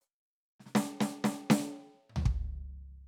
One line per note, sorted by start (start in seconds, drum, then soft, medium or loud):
0.00 hi-hat pedal soft
0.60 snare soft
0.66 snare soft
0.75 snare loud
1.00 snare medium
1.24 snare loud
1.50 snare loud
2.10 high tom soft
2.16 floor tom loud
2.25 kick medium